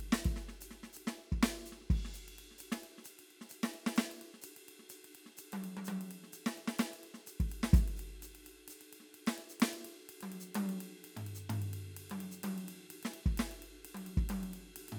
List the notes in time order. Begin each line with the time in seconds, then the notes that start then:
0.01 ride
0.13 snare
0.25 kick, ride
0.37 snare
0.49 snare
0.61 hi-hat pedal, ride
0.71 snare
0.84 snare
0.94 hi-hat pedal, ride
1.08 snare
1.33 kick
1.43 snare, ride
1.66 hi-hat pedal
1.73 snare
1.82 snare
1.91 kick, ride
2.05 snare
2.14 hi-hat pedal, ride
2.29 ride
2.39 ride
2.52 snare
2.59 hi-hat pedal, ride
2.73 snare, ride
2.80 hi-hat pedal
2.84 ride
2.99 snare
3.05 hi-hat pedal, ride
3.20 ride
3.26 hi-hat pedal
3.31 ride
3.42 snare
3.50 hi-hat pedal, ride
3.64 snare, ride
3.75 ride
3.87 snare
3.96 snare, hi-hat pedal, ride
4.12 ride
4.17 hi-hat pedal
4.22 ride
4.34 snare
4.42 hi-hat pedal, ride
4.57 ride
4.64 hi-hat pedal
4.69 ride
4.80 snare
4.90 hi-hat pedal, ride
5.05 ride
5.12 hi-hat pedal, ride
5.27 snare
5.38 hi-hat pedal, ride
5.53 high tom, ride
5.59 hi-hat pedal
5.65 ride
5.78 high tom
5.85 hi-hat pedal, high tom, ride
6.02 ride
6.07 hi-hat pedal
6.12 ride
6.24 snare
6.33 hi-hat pedal, ride
6.47 snare, ride
6.55 hi-hat pedal, ride
6.68 snare
6.79 snare, hi-hat pedal, ride
6.94 ride
7.04 ride
7.15 snare
7.27 hi-hat pedal, ride
7.41 kick, ride
7.49 hi-hat pedal, ride
7.64 snare
7.74 kick, hi-hat pedal, ride
7.88 ride
7.97 hi-hat pedal, ride
8.23 hi-hat pedal, ride
8.36 ride
8.44 hi-hat pedal, ride
8.69 hi-hat pedal, ride
8.82 ride
8.91 hi-hat pedal, ride
9.01 snare
9.15 ride
9.27 snare, ride
9.39 ride
9.50 hi-hat pedal
9.61 snare, ride
9.74 ride
9.85 ride
10.10 ride
10.21 high tom, ride
10.33 ride
10.41 hi-hat pedal
10.55 high tom, ride
10.70 ride
10.81 ride
11.05 ride
11.17 floor tom, ride
11.27 ride
11.36 hi-hat pedal
11.50 floor tom, ride
11.63 ride
11.74 ride
11.97 ride
12.11 high tom, ride
12.21 ride
12.32 hi-hat pedal
12.44 high tom, ride
12.59 ride
12.69 ride
12.91 ride
13.04 snare, ride
13.14 ride
13.27 kick
13.38 snare, ride
13.52 ride
13.63 ride
13.86 ride
13.95 high tom, ride
14.07 ride
14.18 kick
14.30 high tom, ride
14.44 ride
14.54 ride
14.77 ride
14.89 floor tom, ride